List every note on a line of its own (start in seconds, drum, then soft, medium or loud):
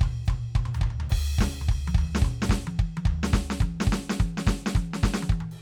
0.01 kick loud
0.01 mid tom loud
0.25 kick loud
0.25 hi-hat pedal soft
0.30 mid tom loud
0.55 kick loud
0.55 mid tom loud
0.65 mid tom loud
0.74 floor tom loud
0.74 hi-hat pedal soft
0.81 kick loud
0.81 floor tom loud
0.90 floor tom medium
1.00 floor tom loud
1.10 kick loud
1.10 crash loud
1.36 kick loud
1.36 hi-hat pedal soft
1.41 snare loud
1.41 floor tom loud
1.61 floor tom loud
1.69 kick loud
1.88 hi-hat pedal soft
1.88 high tom loud
1.95 kick loud
1.95 floor tom loud
2.15 snare loud
2.22 kick loud
2.22 mid tom loud
2.42 snare loud
2.42 hi-hat pedal soft
2.49 kick loud
2.49 snare loud
2.67 high tom loud
2.79 kick loud
2.97 high tom loud
3.05 kick loud
3.05 floor tom loud
3.23 snare loud
3.27 hi-hat pedal medium
3.33 kick loud
3.33 snare loud
3.50 snare loud
3.60 kick loud
3.60 high tom loud
3.80 snare loud
3.80 hi-hat pedal soft
3.87 kick loud
3.92 snare loud
4.10 snare loud
4.14 hi-hat pedal soft
4.20 kick loud
4.20 high tom loud
4.37 snare loud
4.43 kick loud
4.43 hi-hat pedal soft
4.47 snare loud
4.66 snare loud
4.66 hi-hat pedal soft
4.75 kick loud
4.75 high tom loud
4.94 snare loud
4.99 hi-hat pedal soft
5.03 kick loud
5.03 snare loud
5.14 snare loud
5.23 high tom loud
5.29 kick loud
5.29 high tom medium
5.40 mid tom medium
5.51 ride medium